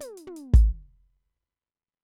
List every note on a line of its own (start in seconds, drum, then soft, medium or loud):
0.01 closed hi-hat medium
0.01 high tom medium
0.18 closed hi-hat medium
0.27 floor tom medium
0.37 closed hi-hat medium
0.54 closed hi-hat medium
0.54 kick loud